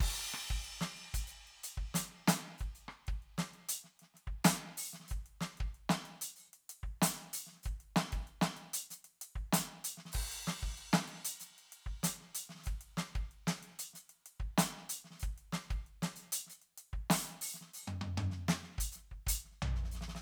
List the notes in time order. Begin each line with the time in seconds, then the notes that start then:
0.01 kick, crash, ride
0.34 cross-stick
0.49 kick, closed hi-hat
0.63 closed hi-hat, hi-hat pedal
0.81 snare
0.97 closed hi-hat
1.14 closed hi-hat, kick
1.27 hi-hat pedal
1.47 closed hi-hat
1.64 closed hi-hat
1.78 kick
1.95 open hi-hat, snare
2.01 snare
2.28 open hi-hat, snare
2.44 snare
2.48 snare
2.58 kick, closed hi-hat, hi-hat pedal
2.75 closed hi-hat
2.89 cross-stick
3.07 kick, closed hi-hat
3.22 closed hi-hat
3.38 snare
3.54 closed hi-hat
3.69 closed hi-hat
3.84 snare
4.00 snare, closed hi-hat
4.14 snare, closed hi-hat
4.27 kick
4.45 open hi-hat, snare
4.49 cross-stick
4.53 snare
4.57 snare
4.60 snare
4.78 open hi-hat
4.93 snare
5.00 snare
5.04 snare
5.07 snare, closed hi-hat, hi-hat pedal
5.11 kick
5.26 closed hi-hat
5.41 snare
5.58 kick, closed hi-hat
5.75 closed hi-hat
5.90 snare
6.06 closed hi-hat
6.22 closed hi-hat
6.36 snare, hi-hat pedal
6.48 snare
6.54 closed hi-hat
6.70 closed hi-hat
6.83 kick
7.02 open hi-hat, snare
7.34 open hi-hat
7.47 snare
7.52 snare
7.55 snare
7.63 kick, snare, hi-hat pedal
7.81 closed hi-hat
7.96 snare
8.13 kick, closed hi-hat
8.27 closed hi-hat
8.42 snare
8.57 closed hi-hat
8.74 closed hi-hat
8.91 snare, hi-hat pedal
9.05 snare, closed hi-hat
9.22 closed hi-hat
9.36 kick
9.53 open hi-hat, snare
9.59 snare
9.85 open hi-hat
9.98 snare
10.06 snare
10.10 snare, hi-hat pedal, crash
10.15 kick
10.31 closed hi-hat
10.47 snare
10.62 kick, closed hi-hat
10.78 closed hi-hat
10.93 snare
11.08 closed hi-hat
11.25 closed hi-hat
11.40 snare, hi-hat pedal
11.51 snare
11.58 closed hi-hat
11.72 closed hi-hat
11.86 kick
12.04 open hi-hat, snare
12.21 snare
12.35 open hi-hat
12.49 snare
12.55 snare
12.59 snare
12.63 snare, closed hi-hat, hi-hat pedal
12.67 kick, snare
12.81 closed hi-hat
12.97 snare
13.16 kick, closed hi-hat
13.31 closed hi-hat
13.47 snare
13.63 closed hi-hat
13.79 open hi-hat
13.94 snare, hi-hat pedal
14.10 closed hi-hat
14.26 closed hi-hat
14.40 kick
14.58 open hi-hat, snare
14.77 snare
14.90 open hi-hat
15.05 snare
15.11 snare
15.14 snare
15.18 snare, hi-hat pedal
15.22 kick, snare, closed hi-hat
15.38 closed hi-hat
15.53 snare
15.71 kick, closed hi-hat
15.87 closed hi-hat
16.03 snare
16.16 closed hi-hat
16.32 closed hi-hat
16.47 snare, hi-hat pedal
16.62 closed hi-hat
16.78 closed hi-hat
16.93 kick
17.10 open hi-hat, snare
17.29 snare
17.42 open hi-hat
17.54 snare
17.61 snare
17.66 snare
17.74 hi-hat pedal
17.88 closed hi-hat, high tom
18.02 high tom
18.18 high tom
18.31 snare
18.49 snare
18.63 snare
18.78 open hi-hat, kick
18.92 snare, hi-hat pedal
19.12 kick
19.27 open hi-hat, kick
19.45 snare
19.51 snare
19.62 floor tom
19.75 snare
19.84 snare
19.89 snare, hi-hat pedal
19.94 snare
20.01 snare
20.08 snare
20.15 snare